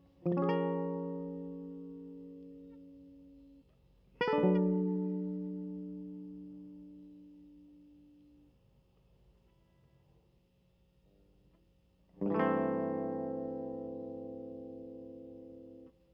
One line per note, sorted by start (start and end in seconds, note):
0.27 3.18 F3
0.37 3.64 C#4
0.42 2.95 G#4
0.49 2.77 A#4
4.21 4.58 B4
4.28 7.21 A4
4.33 8.53 D4
4.39 4.45 A3
4.44 7.82 F#3
4.58 4.88 A#4
12.23 15.89 G2
12.31 15.91 E3
12.31 15.90 A3
12.40 15.91 C4